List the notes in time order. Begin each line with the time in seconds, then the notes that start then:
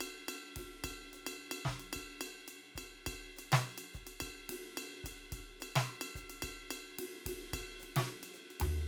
0.01 hi-hat pedal, ride bell
0.29 ride bell
0.56 kick, hi-hat pedal, ride
0.84 kick, ride bell
0.92 kick
1.14 hi-hat pedal, ride bell
1.27 ride bell
1.52 ride bell
1.66 kick, snare
1.71 hi-hat pedal
1.80 ride bell
1.93 kick, ride bell
2.21 hi-hat pedal, ride bell
2.48 ride bell
2.76 kick, hi-hat pedal, ride bell
3.07 kick, ride bell
3.37 hi-hat pedal, ride bell
3.52 snare, ride bell
3.78 ride bell
3.94 kick, hi-hat pedal
4.07 ride bell
4.21 kick, ride bell
4.50 hi-hat pedal, ride
4.78 ride bell
5.04 kick, hi-hat pedal, ride bell
5.33 kick, ride bell
5.41 kick
5.60 hi-hat pedal, ride bell
5.76 snare, ride bell
6.02 ride bell
6.16 kick, hi-hat pedal
6.30 ride bell
6.43 kick, ride bell
6.49 kick
6.71 hi-hat pedal, ride bell
6.99 ride
7.26 kick, hi-hat pedal, ride
7.31 kick
7.54 kick, ride bell
7.62 kick
7.80 hi-hat pedal, ride
7.96 snare, ride
8.23 ride bell
8.34 hi-hat pedal
8.51 ride bell
8.60 floor tom, ride